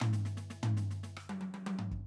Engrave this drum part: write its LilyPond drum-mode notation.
\new DrumStaff \drummode { \time 4/4 \tempo 4 = 116 <ss tomfh>16 sn16 sn16 sn16 sn16 tomfh16 sn16 sn16 sn16 ss16 <tommh hh>16 tommh16 tommh16 tommh16 tomfh16 bd16 | }